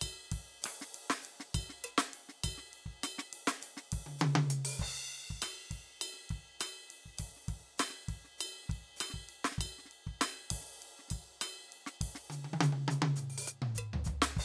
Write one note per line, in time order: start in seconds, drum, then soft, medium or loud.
0.01 kick soft
0.01 hi-hat pedal medium
0.01 ride bell loud
0.32 kick soft
0.32 ride medium
0.62 cross-stick medium
0.62 hi-hat pedal medium
0.62 ride loud
0.82 snare medium
0.95 ride medium
1.10 snare loud
1.22 hi-hat pedal medium
1.22 ride medium
1.40 snare medium
1.55 kick medium
1.55 ride bell loud
1.63 kick soft
1.66 kick soft
1.70 snare soft
1.84 hi-hat pedal medium
1.84 percussion loud
1.98 snare loud
2.14 ride medium
2.29 snare soft
2.44 kick soft
2.44 hi-hat pedal medium
2.44 ride bell loud
2.51 kick soft
2.58 snare soft
2.73 ride soft
2.86 kick soft
3.04 snare medium
3.04 hi-hat pedal medium
3.04 ride bell loud
3.19 snare medium
3.33 ride medium
3.48 snare loud
3.62 hi-hat pedal medium
3.62 ride medium
3.77 snare medium
3.92 kick medium
3.92 ride medium
4.00 kick soft
4.07 high tom medium
4.19 hi-hat pedal medium
4.19 high tom loud
4.36 high tom loud
4.50 closed hi-hat medium
4.65 closed hi-hat loud
4.74 closed hi-hat soft
4.79 kick medium
4.79 hi-hat pedal medium
4.79 crash loud
4.93 kick soft
5.31 kick soft
5.36 kick soft
5.42 cross-stick medium
5.42 hi-hat pedal medium
5.42 ride bell loud
5.71 kick soft
5.71 ride medium
5.78 kick soft
5.90 snare soft
6.02 hi-hat pedal medium
6.02 ride bell loud
6.14 snare soft
6.17 snare soft
6.22 snare soft
6.30 kick soft
6.30 ride soft
6.37 kick soft
6.60 cross-stick medium
6.60 hi-hat pedal medium
6.60 ride bell loud
6.91 ride medium
7.06 kick soft
7.18 kick soft
7.18 snare soft
7.18 hi-hat pedal medium
7.18 ride medium
7.28 kick soft
7.37 snare soft
7.41 snare soft
7.44 snare soft
7.47 kick soft
7.47 snare soft
7.47 ride medium
7.60 kick soft
7.78 snare loud
7.78 hi-hat pedal medium
7.78 ride bell loud
7.90 snare soft
8.09 kick soft
8.09 ride medium
8.15 kick soft
8.25 snare soft
8.38 hi-hat pedal medium
8.38 ride bell loud
8.66 kick medium
8.66 snare soft
8.72 ride soft
8.77 kick soft
8.80 kick soft
8.97 hi-hat pedal medium
9.01 cross-stick medium
9.01 ride bell loud
9.10 kick soft
9.10 snare soft
9.19 kick soft
9.28 hi-hat pedal soft
9.28 ride soft
9.45 snare loud
9.52 snare soft
9.52 hi-hat pedal soft
9.59 kick medium
9.59 ride bell loud
9.65 kick soft
9.79 snare soft
9.86 snare soft
9.92 ride soft
10.07 kick soft
10.21 snare loud
10.21 hi-hat pedal medium
10.21 ride bell loud
10.51 kick soft
10.51 ride loud
10.58 kick soft
10.62 snare soft
10.81 hi-hat pedal soft
10.81 ride soft
10.99 snare soft
11.09 kick soft
11.09 snare soft
11.09 ride bell medium
11.18 kick soft
11.41 cross-stick medium
11.41 hi-hat pedal medium
11.41 ride bell loud
11.72 ride soft
11.87 snare medium
12.01 kick medium
12.01 ride loud
12.08 kick soft
12.11 kick soft
12.15 snare medium
12.30 hi-hat pedal medium
12.30 high tom medium
12.45 high tom medium
12.54 high tom medium
12.61 hi-hat pedal loud
12.61 high tom loud
12.73 high tom medium
12.88 hi-hat pedal medium
12.88 high tom medium
13.02 high tom loud
13.16 hi-hat pedal loud
13.16 mid tom soft
13.30 closed hi-hat medium
13.38 closed hi-hat loud
13.46 closed hi-hat loud
13.46 hi-hat pedal medium
13.62 mid tom loud
13.75 kick soft
13.75 hi-hat pedal medium
13.75 percussion loud
13.94 floor tom medium
14.05 kick soft
14.05 floor tom medium
14.05 hi-hat pedal medium
14.14 kick soft
14.22 snare loud
14.31 cross-stick soft
14.37 kick medium
14.37 hi-hat pedal medium
14.37 crash loud